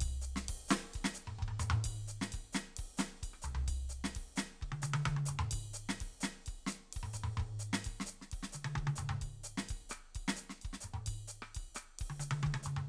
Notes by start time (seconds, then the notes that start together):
0.01 kick, ride bell
0.08 kick
0.11 kick
0.22 hi-hat pedal, ride
0.36 snare
0.49 kick, ride
0.56 kick
0.69 snare, hi-hat pedal
0.94 kick, ride bell
1.05 snare
1.14 hi-hat pedal, ride
1.28 mid tom
1.39 kick, mid tom
1.48 kick, mid tom
1.60 hi-hat pedal, mid tom
1.70 mid tom
1.85 kick, ride bell
1.93 kick
2.07 hi-hat pedal, ride
2.22 snare
2.32 kick, ride bell
2.53 snare, hi-hat pedal
2.77 kick, ride
2.98 snare, hi-hat pedal
3.23 kick, ride bell
3.34 cross-stick
3.42 floor tom, hi-hat pedal
3.55 floor tom
3.68 kick, ride bell
3.75 kick
3.90 hi-hat pedal, ride
4.04 snare
4.15 kick, ride
4.36 snare, hi-hat pedal
4.62 kick, high tom
4.72 high tom
4.82 hi-hat pedal, high tom
4.94 high tom
5.02 hi-hat pedal
5.06 kick, high tom
5.17 high tom
5.26 hi-hat pedal, mid tom
5.39 mid tom
5.51 kick, ride bell
5.61 kick
5.74 hi-hat pedal, ride
5.89 snare
5.95 hi-hat pedal
6.01 kick, ride
6.21 snare, hi-hat pedal
6.42 hi-hat pedal
6.46 kick, ride bell
6.67 snare, hi-hat pedal
6.93 kick, ride
7.03 mid tom
7.14 hi-hat pedal, mid tom
7.24 mid tom
7.37 kick, mid tom
7.60 hi-hat pedal
7.73 snare
7.85 kick, ride bell
8.00 snare
8.06 hi-hat pedal
8.22 snare
8.32 kick, ride
8.43 snare
8.53 hi-hat pedal, high tom
8.65 high tom
8.76 kick, high tom
8.85 kick, high tom
8.96 hi-hat pedal, mid tom
9.10 mid tom
9.22 kick, ride bell
9.44 hi-hat pedal, ride
9.58 snare
9.69 kick, ride bell
9.90 cross-stick, hi-hat pedal
10.15 kick, ride bell
10.28 snare
10.36 hi-hat pedal, ride
10.50 snare
10.62 kick, ride bell
10.73 snare
10.81 hi-hat pedal, mid tom
10.94 mid tom
11.07 kick, ride bell
11.14 kick
11.28 hi-hat pedal, ride
11.42 cross-stick
11.55 kick, ride bell
11.75 cross-stick, hi-hat pedal
11.99 kick, ride
12.07 kick, high tom
12.20 hi-hat pedal, high tom
12.31 high tom
12.40 hi-hat pedal, high tom
12.46 kick
12.52 kick, high tom
12.63 hi-hat pedal, mid tom
12.77 mid tom